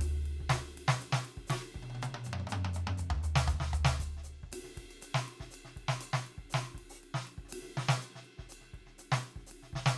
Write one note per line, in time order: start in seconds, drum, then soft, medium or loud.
0.01 kick medium
0.01 hi-hat pedal loud
0.01 ride loud
0.07 kick soft
0.22 hi-hat pedal soft
0.26 ride medium
0.41 kick soft
0.50 snare loud
0.50 hi-hat pedal medium
0.50 ride loud
0.55 snare soft
0.72 hi-hat pedal soft
0.78 ride medium
0.89 snare loud
1.00 hi-hat pedal medium
1.00 ride medium
1.13 snare loud
1.26 ride medium
1.38 kick soft
1.46 kick soft
1.46 hi-hat pedal medium
1.50 snare loud
1.50 ride loud
1.75 kick soft
1.75 high tom medium
1.82 kick soft
1.82 high tom medium
1.91 high tom medium
1.96 high tom medium
2.03 hi-hat pedal loud
2.03 high tom loud
2.15 high tom loud
2.25 hi-hat pedal loud
2.25 mid tom medium
2.34 mid tom loud
2.40 mid tom medium
2.48 hi-hat pedal loud
2.48 mid tom medium
2.53 mid tom loud
2.65 mid tom loud
2.74 hi-hat pedal loud
2.74 mid tom medium
2.88 mid tom loud
2.98 floor tom medium
2.98 hi-hat pedal loud
3.11 floor tom loud
3.24 floor tom medium
3.24 hi-hat pedal loud
3.36 snare loud
3.48 kick soft
3.48 hi-hat pedal loud
3.48 floor tom loud
3.61 snare medium
3.73 kick soft
3.73 hi-hat pedal loud
3.73 floor tom medium
3.85 snare loud
3.93 snare soft
4.00 kick medium
4.00 hi-hat pedal loud
4.00 ride bell medium
4.13 kick soft
4.17 snare soft
4.24 snare soft
4.24 hi-hat pedal medium
4.24 ride soft
4.44 kick soft
4.52 hi-hat pedal loud
4.52 ride loud
4.64 snare soft
4.69 snare soft
4.73 snare soft
4.73 hi-hat pedal soft
4.78 kick soft
4.78 ride medium
4.91 ride bell medium
5.02 hi-hat pedal loud
5.02 ride medium
5.15 snare loud
5.24 hi-hat pedal soft
5.29 ride medium
5.41 kick soft
5.41 snare soft
5.51 hi-hat pedal medium
5.51 ride bell medium
5.65 snare soft
5.73 hi-hat pedal soft
5.77 kick soft
5.77 ride soft
5.89 snare loud
6.01 hi-hat pedal loud
6.01 ride bell medium
6.14 snare loud
6.22 hi-hat pedal soft
6.27 ride medium
6.38 kick soft
6.51 hi-hat pedal loud
6.51 ride medium
6.55 snare loud
6.63 snare soft
6.72 kick soft
6.72 hi-hat pedal soft
6.79 ride medium
6.90 open hi-hat medium
7.04 ride medium
7.15 snare medium
7.28 ride medium
7.38 kick soft
7.46 snare soft
7.46 hi-hat pedal medium
7.53 ride loud
7.62 snare soft
7.71 hi-hat pedal soft
7.78 snare medium
7.89 snare loud
8.02 hi-hat pedal loud
8.16 snare soft
8.23 hi-hat pedal soft
8.23 ride soft
8.39 kick soft
8.39 snare soft
8.43 snare soft
8.50 hi-hat pedal loud
8.50 ride bell medium
8.62 snare soft
8.67 snare soft
8.74 kick soft
8.74 ride soft
8.87 snare soft
8.99 hi-hat pedal medium
8.99 ride medium
9.12 snare loud
9.18 cross-stick soft
9.24 ride soft
9.36 kick soft
9.36 snare soft
9.47 hi-hat pedal loud
9.52 ride medium
9.63 snare soft
9.74 kick soft
9.74 snare medium
9.87 snare loud